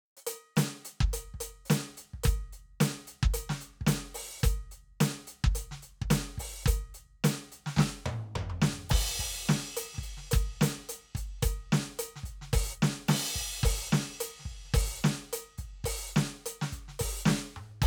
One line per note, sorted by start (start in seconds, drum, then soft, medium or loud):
0.17 hi-hat pedal medium
0.27 closed hi-hat loud
0.56 closed hi-hat loud
0.56 snare loud
0.56 hi-hat pedal medium
0.85 closed hi-hat medium
1.00 kick loud
1.13 closed hi-hat loud
1.34 kick medium
1.40 closed hi-hat loud
1.65 hi-hat pedal medium
1.70 closed hi-hat loud
1.70 snare loud
1.97 closed hi-hat medium
2.13 kick medium
2.24 closed hi-hat loud
2.24 kick loud
2.53 closed hi-hat soft
2.80 closed hi-hat loud
2.80 snare loud
3.07 closed hi-hat medium
3.23 kick loud
3.34 closed hi-hat loud
3.49 snare medium
3.61 closed hi-hat medium
3.81 kick medium
3.87 closed hi-hat loud
3.87 snare loud
4.14 open hi-hat loud
4.39 kick loud
4.39 hi-hat pedal medium
4.43 closed hi-hat loud
4.71 closed hi-hat medium
5.00 closed hi-hat loud
5.00 snare loud
5.27 closed hi-hat medium
5.44 kick loud
5.55 closed hi-hat loud
5.71 snare medium
5.82 closed hi-hat medium
6.02 kick loud
6.10 closed hi-hat loud
6.10 snare loud
6.38 open hi-hat loud
6.38 kick medium
6.62 kick loud
6.62 hi-hat pedal medium
6.67 closed hi-hat loud
6.94 closed hi-hat medium
7.24 closed hi-hat loud
7.24 snare loud
7.52 closed hi-hat medium
7.66 snare medium
7.76 kick medium
7.76 snare medium
7.78 snare loud
8.06 high tom loud
8.35 kick medium
8.35 mid tom loud
8.50 mid tom soft
8.50 high tom medium
8.62 snare loud
8.89 kick loud
8.89 crash loud
9.19 open hi-hat medium
9.19 kick medium
9.45 snare loud
9.45 hi-hat pedal medium
9.77 closed hi-hat loud
9.94 snare soft
9.98 kick medium
10.03 closed hi-hat medium
10.17 snare soft
10.31 closed hi-hat loud
10.31 kick loud
10.61 closed hi-hat loud
10.61 snare loud
10.89 closed hi-hat loud
11.15 closed hi-hat medium
11.15 kick medium
11.42 closed hi-hat loud
11.42 kick loud
11.72 snare loud
11.99 closed hi-hat loud
12.16 snare medium
12.23 closed hi-hat medium
12.23 kick medium
12.41 snare soft
12.53 open hi-hat loud
12.53 kick loud
12.72 hi-hat pedal medium
12.82 snare loud
13.08 snare loud
13.08 hi-hat pedal soft
13.08 crash loud
13.35 closed hi-hat medium
13.35 kick medium
13.63 open hi-hat loud
13.63 kick loud
13.87 hi-hat pedal medium
13.92 snare loud
14.20 closed hi-hat loud
14.39 snare soft
14.45 kick medium
14.45 closed hi-hat soft
14.65 snare soft
14.74 open hi-hat loud
14.74 kick loud
14.98 hi-hat pedal soft
15.04 snare loud
15.33 closed hi-hat loud
15.58 closed hi-hat soft
15.58 kick medium
15.84 open hi-hat loud
15.84 kick medium
16.08 hi-hat pedal soft
16.16 snare loud
16.46 closed hi-hat loud
16.61 snare medium
16.72 closed hi-hat medium
16.72 kick medium
16.88 snare soft
16.99 open hi-hat loud
16.99 kick loud
17.20 hi-hat pedal soft
17.25 snare loud
17.28 snare loud
17.56 high tom medium
17.82 kick loud
17.82 crash loud